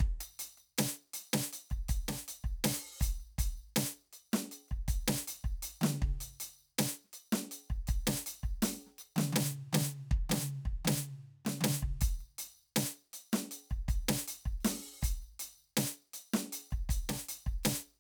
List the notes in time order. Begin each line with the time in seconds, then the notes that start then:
0.01 kick
0.21 closed hi-hat
0.40 closed hi-hat
0.58 closed hi-hat
0.79 closed hi-hat, snare
0.97 closed hi-hat
1.14 closed hi-hat
1.34 snare
1.53 closed hi-hat
1.71 kick, closed hi-hat
1.89 closed hi-hat, kick
2.09 snare
2.29 closed hi-hat
2.45 kick
2.65 snare, percussion
3.01 closed hi-hat, kick, hi-hat pedal
3.20 closed hi-hat
3.39 closed hi-hat, kick
3.77 closed hi-hat, snare
4.13 closed hi-hat
4.33 snare, closed hi-hat
4.52 closed hi-hat
4.69 kick, closed hi-hat
4.89 closed hi-hat, kick
5.08 snare
5.28 closed hi-hat
5.45 kick, closed hi-hat
5.63 closed hi-hat
5.82 snare, high tom
6.03 kick
6.21 closed hi-hat
6.41 closed hi-hat
6.79 closed hi-hat, snare
6.98 closed hi-hat
7.05 snare
7.14 closed hi-hat
7.33 snare, closed hi-hat
7.52 closed hi-hat
7.69 kick, closed hi-hat
7.88 closed hi-hat, kick
8.08 snare
8.27 closed hi-hat
8.44 kick, closed hi-hat
8.63 snare, percussion
8.87 snare
8.99 hi-hat pedal
9.17 snare, high tom
9.33 snare, hi-hat pedal, high tom
9.73 snare, hi-hat pedal, high tom
10.12 kick
10.30 snare, high tom
10.34 high tom
10.66 kick
10.85 snare, high tom
11.46 snare, high tom
11.61 snare, high tom
11.83 kick
12.02 closed hi-hat, kick
12.21 closed hi-hat
12.39 closed hi-hat
12.77 closed hi-hat, snare
12.96 closed hi-hat
13.14 closed hi-hat
13.33 snare, closed hi-hat
13.52 closed hi-hat
13.71 kick, closed hi-hat
13.89 closed hi-hat, kick
14.09 snare
14.28 closed hi-hat
14.45 kick, closed hi-hat
14.61 hi-hat pedal
14.65 snare, percussion
15.03 closed hi-hat, kick, hi-hat pedal
15.23 closed hi-hat
15.40 closed hi-hat
15.60 closed hi-hat
15.78 closed hi-hat, snare
16.14 closed hi-hat
16.34 snare
16.53 closed hi-hat
16.71 kick, closed hi-hat
16.90 closed hi-hat, kick
17.10 snare
17.29 closed hi-hat
17.47 kick, closed hi-hat
17.64 closed hi-hat, snare, hi-hat pedal